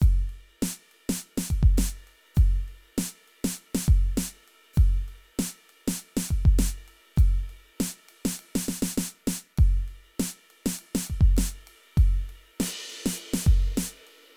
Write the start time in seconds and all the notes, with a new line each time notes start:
0.00 kick, hi-hat pedal, ride
0.29 ride
0.62 snare, ride
0.91 ride
1.09 snare
1.22 ride
1.37 snare
1.50 kick, ride
1.63 kick
1.78 snare, ride
2.07 ride
2.35 kick, hi-hat pedal, ride
2.68 ride
2.98 snare, ride
3.27 ride
3.44 snare
3.57 ride
3.75 snare
3.87 kick, ride
4.17 snare, ride
4.48 ride
4.73 hi-hat pedal
4.77 kick, ride
5.08 ride
5.39 snare, ride
5.69 ride
5.88 snare
5.99 ride
6.17 snare
6.29 kick, ride
6.45 kick
6.58 snare, ride
6.88 ride
7.16 kick, hi-hat pedal, ride
7.49 ride
7.80 snare, ride
8.09 ride
8.25 snare
8.39 ride
8.55 snare
8.68 snare
8.82 snare
8.97 snare
9.27 snare
9.58 kick, ride
9.88 ride
10.19 snare, ride
10.50 ride
10.66 snare
10.79 ride
10.95 snare
11.07 kick, ride
11.21 kick
11.37 snare, ride
11.67 ride
11.97 kick, ride
12.29 ride
12.60 snare, ride
12.90 ride
13.06 snare
13.18 ride
13.33 snare
13.46 kick, ride
13.77 snare, ride
14.07 ride